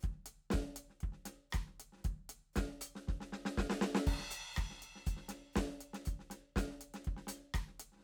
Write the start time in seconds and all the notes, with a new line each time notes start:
0.01 kick, closed hi-hat, hi-hat pedal
0.12 snare
0.26 closed hi-hat
0.51 kick, snare, closed hi-hat
0.64 snare
0.77 closed hi-hat
0.90 snare
1.01 kick, closed hi-hat
1.13 snare
1.26 snare, open hi-hat
1.51 kick, cross-stick, closed hi-hat, hi-hat pedal
1.67 snare
1.80 closed hi-hat
1.93 snare
1.97 snare
1.99 snare
2.05 kick, closed hi-hat
2.30 open hi-hat
2.54 kick, snare, closed hi-hat, hi-hat pedal
2.71 snare
2.82 closed hi-hat
2.96 snare
3.08 kick, snare
3.21 snare
3.33 snare
3.46 snare
3.58 kick, snare
3.70 snare
3.82 snare
3.95 snare
4.07 kick, crash
4.19 snare
4.30 open hi-hat, snare
4.54 cross-stick, hi-hat pedal
4.58 kick, closed hi-hat
4.71 snare
4.83 closed hi-hat
4.96 snare
5.07 closed hi-hat, kick
5.17 snare
5.29 snare, open hi-hat
5.54 kick, snare, closed hi-hat, hi-hat pedal
5.70 snare
5.81 closed hi-hat
5.94 snare, closed hi-hat
6.06 closed hi-hat, kick
6.20 snare
6.31 snare, closed hi-hat
6.56 closed hi-hat, kick, snare
6.71 snare
6.81 closed hi-hat
6.94 snare, closed hi-hat
7.05 kick, closed hi-hat
7.17 snare
7.27 closed hi-hat, snare
7.54 kick, cross-stick, closed hi-hat
7.68 snare
7.80 closed hi-hat
7.92 snare
7.97 snare
7.99 snare